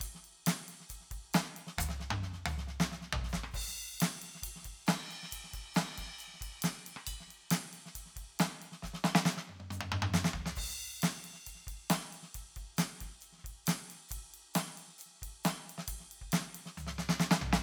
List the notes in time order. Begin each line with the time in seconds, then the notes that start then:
0.01 kick, hi-hat pedal, ride
0.15 snare
0.22 snare, ride
0.47 snare, hi-hat pedal, ride
0.69 ride
0.81 snare
0.90 kick, hi-hat pedal, ride
1.01 snare
1.12 kick, ride
1.34 snare, hi-hat pedal, ride
1.42 snare
1.57 ride
1.67 snare
1.78 kick, hi-hat pedal, mid tom
1.90 snare
2.00 snare
2.11 high tom
2.23 snare
2.33 snare
2.47 hi-hat pedal, mid tom
2.58 snare
2.68 snare
2.81 snare, hi-hat pedal
2.92 snare
3.02 snare
3.13 kick, floor tom
3.24 snare
3.29 hi-hat pedal
3.34 kick, snare
3.44 cross-stick
3.52 kick, hi-hat pedal, crash
3.68 kick, snare
3.74 snare
3.95 kick
4.01 snare, hi-hat pedal, ride
4.22 ride
4.35 snare
4.43 kick, hi-hat pedal, ride
4.49 kick
4.56 snare
4.62 kick, snare, ride
4.87 snare, hi-hat pedal, ride
5.11 ride
5.23 snare
5.32 kick, hi-hat pedal, ride
5.45 snare
5.52 kick, snare, ride
5.75 snare, hi-hat pedal, ride
5.98 kick, ride
6.05 kick, snare
6.19 hi-hat pedal, ride
6.28 snare
6.34 snare
6.42 kick, ride
6.48 kick
6.63 snare, hi-hat pedal, ride
6.87 ride
6.97 cross-stick
7.07 kick, hi-hat pedal, ride bell
7.14 kick
7.21 snare
7.28 snare, ride
7.51 snare, hi-hat pedal, ride
7.74 ride
7.86 snare
7.96 kick, hi-hat pedal, ride
8.06 snare
8.14 kick, snare
8.18 ride
8.40 snare, hi-hat pedal, ride
8.62 ride
8.72 snare
8.83 kick, snare, hi-hat pedal
8.90 kick
8.94 snare
9.05 snare
9.16 snare
9.26 snare
9.31 hi-hat pedal
9.38 snare
9.50 high tom
9.61 high tom
9.71 hi-hat pedal, high tom
9.81 high tom
9.93 high tom
10.03 high tom
10.14 snare, hi-hat pedal
10.25 snare
10.34 kick, mid tom
10.40 kick
10.47 snare
10.56 kick, hi-hat pedal, crash
10.64 kick
10.69 cross-stick, snare
11.03 snare, hi-hat pedal, ride
11.25 ride
11.34 snare
11.47 kick, hi-hat pedal, ride
11.56 snare
11.59 snare
11.68 kick, ride
11.73 kick
11.90 snare, hi-hat pedal, ride
12.00 snare
12.13 ride
12.23 snare
12.35 kick, hi-hat pedal, ride
12.41 kick
12.57 kick, ride
12.63 kick
12.77 snare, hi-hat pedal, ride
13.01 kick, ride
13.07 kick
13.12 snare
13.21 hi-hat pedal, ride
13.33 snare
13.38 snare
13.45 kick, ride
13.50 kick
13.66 snare, hi-hat pedal, ride
13.91 ride
14.05 snare
14.09 kick, hi-hat pedal, ride
14.17 kick, snare
14.26 snare
14.35 ride
14.55 snare, hi-hat pedal, ride
14.67 snare
14.78 ride
14.88 snare
14.99 hi-hat pedal, ride
15.06 snare
15.11 snare
15.14 snare
15.17 snare
15.21 kick, snare, ride
15.28 kick
15.44 snare, hi-hat pedal, ride
15.70 ride
15.79 snare
15.88 kick, hi-hat pedal, ride
16.01 snare
16.06 snare
16.12 ride
16.22 kick
16.33 snare, hi-hat pedal, ride
16.41 snare
16.55 ride
16.66 snare
16.78 hi-hat pedal, mid tom
16.87 snare
16.99 snare
17.10 snare
17.20 snare, hi-hat pedal
17.32 snare
17.42 floor tom
17.53 snare